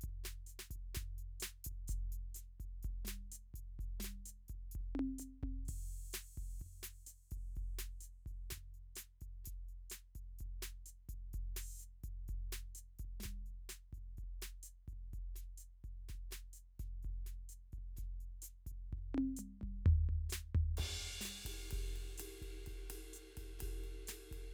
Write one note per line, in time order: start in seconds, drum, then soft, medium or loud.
0.01 closed hi-hat soft
0.01 kick soft
0.09 kick soft
0.24 closed hi-hat medium
0.24 snare soft
0.47 closed hi-hat soft
0.47 snare soft
0.47 hi-hat pedal medium
0.59 snare soft
0.71 closed hi-hat soft
0.71 kick soft
0.76 kick soft
0.94 closed hi-hat medium
0.94 kick soft
0.94 snare soft
1.03 kick soft
1.18 open hi-hat soft
1.40 closed hi-hat soft
1.40 snare soft
1.40 snare medium
1.40 hi-hat pedal medium
1.64 closed hi-hat medium
1.64 kick soft
1.72 kick soft
1.88 open hi-hat soft
1.88 kick soft
1.88 hi-hat pedal medium
1.95 kick soft
2.12 closed hi-hat soft
2.35 closed hi-hat medium
2.35 snare soft
2.35 hi-hat pedal medium
2.60 kick soft
2.60 closed hi-hat soft
2.65 kick soft
2.83 closed hi-hat soft
2.83 kick soft
2.90 kick soft
3.05 closed hi-hat medium
3.05 snare soft
3.05 mid tom soft
3.08 snare soft
3.32 hi-hat pedal medium
3.54 closed hi-hat soft
3.54 kick soft
3.59 kick soft
3.79 kick soft
3.79 closed hi-hat soft
3.84 kick soft
4.00 closed hi-hat medium
4.00 snare soft
4.00 mid tom soft
4.04 snare soft
4.26 hi-hat pedal medium
4.48 kick soft
4.48 closed hi-hat soft
4.55 kick soft
4.71 kick soft
4.71 closed hi-hat soft
4.81 kick soft
4.95 high tom medium
4.99 high tom loud
5.19 hi-hat pedal medium
5.19 high tom soft
5.43 kick soft
5.43 high tom medium
5.49 kick soft
5.65 kick soft
5.65 hi-hat pedal soft
5.65 crash medium
6.13 closed hi-hat medium
6.13 snare soft
6.13 hi-hat pedal medium
6.37 kick soft
6.37 closed hi-hat soft
6.43 kick soft
6.59 kick soft
6.59 closed hi-hat soft
6.66 kick soft
6.83 closed hi-hat medium
6.83 snare soft
7.06 closed hi-hat soft
7.06 hi-hat pedal medium
7.31 closed hi-hat soft
7.31 kick soft
7.37 kick soft
7.56 kick soft
7.56 closed hi-hat soft
7.62 kick soft
7.79 closed hi-hat medium
7.79 snare soft
8.01 closed hi-hat soft
8.01 hi-hat pedal medium
8.26 kick soft
8.26 closed hi-hat soft
8.31 kick soft
8.50 closed hi-hat medium
8.50 kick soft
8.50 snare soft
8.57 kick soft
8.74 closed hi-hat soft
8.96 closed hi-hat medium
8.96 snare soft
8.96 hi-hat pedal medium
9.21 closed hi-hat soft
9.21 kick soft
9.44 closed hi-hat medium
9.44 kick soft
9.44 snare soft
9.69 closed hi-hat soft
9.90 closed hi-hat medium
9.90 snare soft
9.90 hi-hat pedal medium
10.15 closed hi-hat soft
10.15 kick soft
10.39 closed hi-hat soft
10.39 kick soft
10.46 kick soft
10.62 closed hi-hat medium
10.62 snare soft
10.86 hi-hat pedal medium
11.09 closed hi-hat soft
11.09 kick soft
11.14 kick soft
11.33 closed hi-hat soft
11.33 kick soft
11.40 kick soft
11.56 open hi-hat medium
11.56 snare soft
11.80 hi-hat pedal medium
12.04 closed hi-hat soft
12.04 kick soft
12.09 kick soft
12.28 closed hi-hat soft
12.28 kick soft
12.35 kick soft
12.52 closed hi-hat medium
12.52 snare soft
12.75 hi-hat pedal medium
12.99 closed hi-hat soft
12.99 kick soft
13.05 kick soft
13.20 closed hi-hat medium
13.20 snare soft
13.20 hi-hat pedal soft
13.20 mid tom soft
13.23 kick soft
13.23 snare soft
13.31 kick soft
13.46 closed hi-hat soft
13.69 snare soft
13.69 hi-hat pedal medium
13.93 closed hi-hat soft
13.93 kick soft
13.98 kick soft
14.17 closed hi-hat soft
14.17 kick soft
14.24 kick soft
14.42 closed hi-hat soft
14.42 snare soft
14.63 closed hi-hat soft
14.63 hi-hat pedal medium
14.88 closed hi-hat soft
14.88 kick soft
14.93 kick soft
15.13 closed hi-hat soft
15.13 kick soft
15.19 kick soft
15.36 closed hi-hat soft
15.36 snare soft
15.58 closed hi-hat soft
15.58 hi-hat pedal medium
15.84 closed hi-hat soft
15.84 kick soft
16.09 closed hi-hat soft
16.09 kick soft
16.09 snare soft
16.15 kick soft
16.31 closed hi-hat soft
16.31 snare soft
16.53 closed hi-hat soft
16.53 hi-hat pedal medium
16.79 closed hi-hat soft
16.79 kick soft
16.79 snare soft
16.85 kick soft
17.03 closed hi-hat soft
17.03 kick soft
17.10 kick soft
17.26 closed hi-hat soft
17.26 snare soft
17.49 hi-hat pedal medium
17.72 closed hi-hat soft
17.72 kick soft
17.78 kick soft
17.96 closed hi-hat soft
17.96 kick soft
17.96 snare soft
18.04 kick soft
18.20 closed hi-hat soft
18.42 closed hi-hat medium
18.42 snare soft
18.42 hi-hat pedal medium
18.67 kick soft
18.67 closed hi-hat soft
18.72 kick soft
18.93 kick soft
18.99 kick soft
19.14 high tom medium
19.18 high tom loud
19.37 hi-hat pedal medium
19.37 mid tom soft
19.61 kick soft
19.61 mid tom soft
19.68 kick soft
19.86 kick soft
19.86 floor tom loud
19.94 kick soft
20.09 floor tom medium
20.29 snare soft
20.29 hi-hat pedal medium
20.32 snare medium
20.55 kick soft
20.55 floor tom medium
20.62 kick soft
20.77 kick soft
20.77 hi-hat pedal soft
20.77 ride medium
20.85 kick soft
21.21 snare soft
21.21 hi-hat pedal medium
21.21 mid tom soft
21.21 crash medium
21.25 snare soft
21.45 kick soft
21.45 ride medium
21.50 kick soft
21.71 kick soft
21.71 hi-hat pedal soft
21.71 ride medium
21.78 kick soft
21.96 ride soft
22.18 snare soft
22.18 hi-hat pedal medium
22.18 ride medium
22.42 kick soft
22.42 ride soft
22.64 kick soft
22.64 hi-hat pedal soft
22.64 ride soft
22.73 kick soft
22.90 snare soft
22.90 ride medium
23.13 hi-hat pedal medium
23.13 ride soft
23.37 kick soft
23.37 ride soft
23.42 kick soft
23.59 kick soft
23.59 snare soft
23.59 ride medium
23.68 kick soft
23.84 ride soft
24.07 snare soft
24.07 hi-hat pedal medium
24.07 ride medium
24.31 kick soft
24.31 ride soft
24.36 kick soft